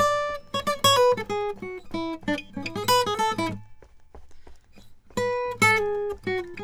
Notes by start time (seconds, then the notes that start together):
0.00 D5
0.55 C#5
0.67 D5
0.84 C#5
0.96 B4
1.18 A4
1.30 G#4
1.63 F#4
1.95 E4
2.28 D4
2.57 C#4
2.64 E4
2.76 G#4
2.88 B4
3.07 G#4
3.19 A4
3.39 E4
5.17 B4
5.62 A4
5.77 G#4
6.27 F#4
6.39 F4